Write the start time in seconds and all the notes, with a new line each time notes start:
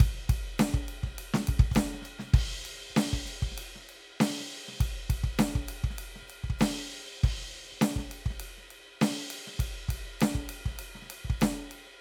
0.01 kick, hi-hat pedal, ride
0.30 kick, ride
0.59 snare, hi-hat pedal, ride
0.75 kick
0.88 hi-hat pedal, ride
1.04 kick, snare
1.11 snare
1.14 snare
1.19 hi-hat pedal, ride
1.35 snare
1.44 hi-hat pedal
1.48 kick, ride
1.60 kick
1.72 kick, hi-hat pedal, ride
1.77 snare
1.94 snare
2.02 snare, ride bell
2.20 snare
2.24 snare
2.28 snare
2.35 kick, hi-hat pedal, ride
2.66 ride
2.91 kick
2.97 snare, hi-hat pedal, ride
3.14 kick
3.26 snare, hi-hat pedal, ride
3.43 kick
3.52 snare
3.57 hi-hat pedal, ride
3.76 snare
3.90 ride
4.20 snare, hi-hat pedal, ride
4.41 snare
4.45 snare
4.50 ride
4.69 snare
4.73 snare
4.78 kick, snare, hi-hat pedal, ride
5.11 kick, ride
5.25 kick
5.39 snare, hi-hat pedal, ride
5.56 kick
5.68 hi-hat pedal, ride
5.85 kick
5.91 snare
5.96 hi-hat pedal, ride
6.16 snare
6.22 kick, snare
6.26 snare, hi-hat pedal
6.31 ride
6.45 kick
6.51 kick
6.60 snare, hi-hat pedal, ride
7.24 kick, ride
7.73 kick
7.82 snare, hi-hat pedal, ride
7.97 kick, snare
8.09 snare, hi-hat pedal, ride
8.27 kick
8.31 snare
8.41 ride
8.58 snare
8.71 ride
9.00 snare, hi-hat pedal, ride
9.31 ride
9.47 snare
9.50 snare
9.54 snare
9.59 kick, hi-hat pedal, ride
9.89 kick, ride
10.21 snare, hi-hat pedal, ride
10.36 kick
10.50 hi-hat pedal, ride
10.67 kick, snare
10.72 snare
10.75 snare
10.78 snare, hi-hat pedal, ride
10.95 snare
11.02 snare
11.06 snare
11.10 snare, hi-hat pedal, ride
11.26 kick
11.31 kick, ride
11.41 snare, hi-hat pedal, ride
11.72 ride